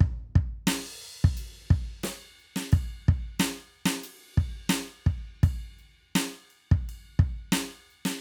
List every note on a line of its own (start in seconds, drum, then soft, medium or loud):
0.01 kick loud
0.36 kick loud
0.67 snare loud
0.67 crash loud
1.24 kick loud
1.37 ride loud
1.71 kick loud
2.04 snare loud
2.04 ride bell loud
2.39 ride soft
2.56 snare medium
2.72 kick loud
2.72 ride bell loud
3.09 kick loud
3.40 snare loud
3.40 ride bell medium
3.86 snare loud
3.94 snare soft
4.04 ride loud
4.38 kick loud
4.70 snare loud
4.70 ride bell medium
5.07 kick loud
5.43 kick loud
5.43 ride bell medium
5.79 floor tom soft
5.79 ride soft
6.16 snare loud
6.16 ride bell medium
6.51 ride bell soft
6.72 kick loud
6.89 ride bell medium
7.19 kick loud
7.52 snare loud
7.52 ride bell loud
7.90 ride soft
8.05 snare loud